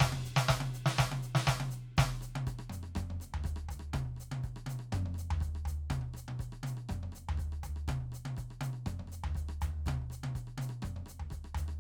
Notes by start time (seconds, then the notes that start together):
0.01 kick, snare, hi-hat pedal
0.13 high tom
0.26 kick, hi-hat pedal
0.37 snare
0.49 kick, snare, hi-hat pedal
0.61 high tom
0.75 hi-hat pedal
0.86 snare
0.98 kick, snare, hi-hat pedal
1.12 high tom
1.23 hi-hat pedal
1.36 snare
1.47 kick, snare, hi-hat pedal
1.61 high tom
1.72 hi-hat pedal
1.97 kick, snare, hi-hat pedal, high tom
2.22 cross-stick, hi-hat pedal
2.36 high tom
2.47 kick, cross-stick, hi-hat pedal
2.59 cross-stick
2.70 hi-hat pedal, mid tom
2.84 cross-stick
2.96 kick, cross-stick, hi-hat pedal, mid tom
3.11 mid tom
3.21 cross-stick, hi-hat pedal
3.35 floor tom
3.44 kick, cross-stick, hi-hat pedal
3.57 cross-stick
3.69 floor tom, hi-hat pedal
3.80 cross-stick
3.94 kick, cross-stick, hi-hat pedal, high tom
4.06 high tom
4.09 high tom
4.17 cross-stick, hi-hat pedal
4.32 high tom
4.44 kick, cross-stick, hi-hat pedal
4.57 cross-stick
4.67 hi-hat pedal, high tom
4.80 cross-stick
4.93 kick, cross-stick, hi-hat pedal, mid tom
5.06 mid tom
5.15 cross-stick, hi-hat pedal
5.31 floor tom
5.41 kick, cross-stick, hi-hat pedal
5.56 cross-stick
5.66 floor tom, hi-hat pedal
5.91 kick, cross-stick, hi-hat pedal, high tom
6.02 high tom
6.05 high tom
6.14 cross-stick, hi-hat pedal
6.29 high tom
6.40 kick, cross-stick, hi-hat pedal
6.53 cross-stick
6.64 hi-hat pedal, high tom
6.78 cross-stick
6.89 kick, cross-stick, hi-hat pedal, mid tom
7.04 mid tom
7.13 cross-stick, hi-hat pedal
7.29 floor tom
7.38 kick, cross-stick, hi-hat pedal
7.53 cross-stick
7.64 floor tom, hi-hat pedal
7.77 cross-stick
7.88 kick, cross-stick, hi-hat pedal, high tom
8.01 high tom
8.05 high tom
8.13 cross-stick, hi-hat pedal
8.26 high tom
8.37 kick, cross-stick, hi-hat pedal
8.51 cross-stick
8.61 hi-hat pedal, high tom
8.74 cross-stick
8.87 kick, cross-stick, hi-hat pedal, mid tom
9.00 mid tom
9.08 cross-stick
9.12 hi-hat pedal
9.24 floor tom
9.35 kick, cross-stick, hi-hat pedal
9.49 cross-stick
9.62 floor tom, hi-hat pedal
9.86 kick, cross-stick, hi-hat pedal, high tom
9.94 high tom
10.02 high tom
10.11 cross-stick, hi-hat pedal
10.24 high tom
10.36 kick, cross-stick, hi-hat pedal
10.48 cross-stick
10.58 hi-hat pedal, high tom
10.70 cross-stick
10.83 kick, cross-stick, hi-hat pedal, mid tom
10.97 mid tom
11.07 cross-stick, hi-hat pedal
11.20 floor tom
11.31 kick, cross-stick, hi-hat pedal
11.45 cross-stick
11.55 floor tom, hi-hat pedal
11.69 cross-stick